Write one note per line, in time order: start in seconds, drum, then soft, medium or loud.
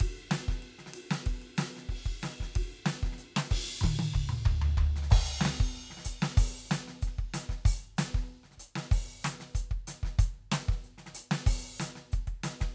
0.01 kick medium
0.01 ride loud
0.32 snare loud
0.32 hi-hat pedal medium
0.32 ride medium
0.49 kick medium
0.49 snare soft
0.58 snare soft
0.63 ride medium
0.79 snare soft
0.87 snare medium
0.94 hi-hat pedal medium
0.94 ride loud
1.12 snare loud
1.27 kick medium
1.27 ride medium
1.43 ride soft
1.58 snare loud
1.58 hi-hat pedal medium
1.58 ride loud
1.77 snare soft
1.90 kick soft
1.90 ride medium
2.07 kick medium
2.07 ride medium
2.23 snare loud
2.23 hi-hat pedal medium
2.23 ride medium
2.41 kick soft
2.41 snare soft
2.56 kick medium
2.56 ride loud
2.86 kick soft
2.86 snare loud
2.86 hi-hat pedal medium
2.86 ride medium
3.04 kick medium
3.04 snare soft
3.13 snare soft
3.16 snare soft
3.16 hi-hat pedal medium
3.16 ride medium
3.20 snare soft
3.37 snare loud
3.52 kick medium
3.52 hi-hat pedal soft
3.52 ride loud
3.82 kick medium
3.82 mid tom loud
3.82 high tom loud
4.00 high tom loud
4.14 kick medium
4.14 floor tom medium
4.14 hi-hat pedal soft
4.30 mid tom loud
4.46 kick medium
4.46 floor tom loud
4.62 floor tom loud
4.78 kick medium
4.78 floor tom loud
4.97 snare medium
5.03 snare soft
5.07 kick soft
5.07 snare soft
5.11 kick loud
5.11 hi-hat pedal medium
5.11 crash loud
5.42 snare loud
5.42 hi-hat pedal medium
5.46 snare loud
5.61 kick medium
5.66 snare soft
5.75 closed hi-hat soft
5.91 snare soft
5.98 snare medium
6.00 snare soft
6.06 closed hi-hat loud
6.06 kick soft
6.23 snare loud
6.38 open hi-hat loud
6.38 kick loud
6.71 closed hi-hat loud
6.71 snare loud
6.71 hi-hat pedal soft
6.88 snare medium
7.03 closed hi-hat medium
7.03 kick medium
7.08 snare soft
7.19 kick medium
7.19 closed hi-hat soft
7.35 closed hi-hat loud
7.35 snare loud
7.50 kick medium
7.50 snare soft
7.66 open hi-hat loud
7.66 kick loud
7.98 closed hi-hat loud
7.98 snare loud
7.98 hi-hat pedal soft
8.15 kick medium
8.15 snare soft
8.23 snare soft
8.29 closed hi-hat soft
8.44 snare soft
8.52 snare soft
8.59 closed hi-hat medium
8.59 kick soft
8.76 snare loud
8.92 open hi-hat loud
8.92 kick loud
9.08 open hi-hat soft
9.24 closed hi-hat loud
9.24 snare loud
9.24 hi-hat pedal medium
9.41 snare medium
9.56 closed hi-hat loud
9.56 kick medium
9.72 kick medium
9.72 closed hi-hat soft
9.88 closed hi-hat loud
9.88 snare medium
10.04 kick medium
10.04 snare medium
10.20 open hi-hat loud
10.20 kick loud
10.52 open hi-hat loud
10.52 snare loud
10.52 hi-hat pedal soft
10.69 kick medium
10.69 snare soft
10.84 closed hi-hat soft
10.99 snare soft
11.07 snare medium
11.14 closed hi-hat loud
11.14 kick soft
11.32 snare loud
11.47 open hi-hat loud
11.47 kick loud
11.80 closed hi-hat loud
11.80 snare loud
11.80 hi-hat pedal medium
11.96 snare medium
12.13 closed hi-hat medium
12.13 kick medium
12.28 kick soft
12.28 closed hi-hat soft
12.44 closed hi-hat loud
12.44 snare loud
12.61 kick medium
12.61 snare medium